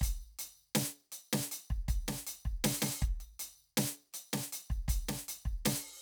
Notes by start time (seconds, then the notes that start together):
0.01 closed hi-hat, kick, hi-hat pedal
0.22 closed hi-hat
0.39 closed hi-hat
0.75 closed hi-hat, snare
1.12 closed hi-hat
1.33 snare
1.51 closed hi-hat
1.70 kick, closed hi-hat
1.88 closed hi-hat, kick
2.08 snare
2.27 closed hi-hat
2.43 kick, closed hi-hat
2.64 snare, percussion
2.82 snare, percussion
3.02 kick, hi-hat pedal
3.20 closed hi-hat
3.39 closed hi-hat
3.77 closed hi-hat, snare
3.97 closed hi-hat
4.13 closed hi-hat, hi-hat pedal
4.33 snare
4.52 closed hi-hat
4.70 kick, closed hi-hat
4.88 closed hi-hat, kick
5.08 snare
5.28 closed hi-hat
5.45 kick
5.65 snare, percussion